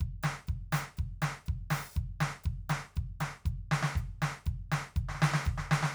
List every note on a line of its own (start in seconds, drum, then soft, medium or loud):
0.00 closed hi-hat soft
0.00 kick medium
0.23 closed hi-hat medium
0.23 snare loud
0.47 closed hi-hat soft
0.47 kick medium
0.72 open hi-hat loud
0.72 snare loud
0.72 hi-hat pedal soft
0.97 closed hi-hat medium
0.97 kick medium
1.22 closed hi-hat medium
1.22 snare loud
1.46 closed hi-hat medium
1.46 kick medium
1.70 open hi-hat medium
1.70 snare loud
1.94 closed hi-hat medium
1.94 kick medium
1.94 hi-hat pedal medium
2.20 closed hi-hat medium
2.20 snare loud
2.44 closed hi-hat medium
2.44 kick medium
2.69 closed hi-hat medium
2.69 snare loud
2.96 closed hi-hat soft
2.96 kick medium
3.20 closed hi-hat medium
3.20 snare medium
3.45 closed hi-hat medium
3.45 kick medium
3.71 snare loud
3.83 snare loud
3.95 closed hi-hat medium
3.95 kick medium
4.22 closed hi-hat medium
4.22 snare loud
4.46 closed hi-hat medium
4.46 kick medium
4.72 closed hi-hat medium
4.72 snare loud
4.96 closed hi-hat medium
4.96 kick medium
5.09 snare medium
5.14 snare soft
5.19 snare loud
5.19 hi-hat pedal soft
5.33 snare loud
5.45 closed hi-hat medium
5.45 kick medium
5.58 snare medium
5.71 snare loud
5.83 snare loud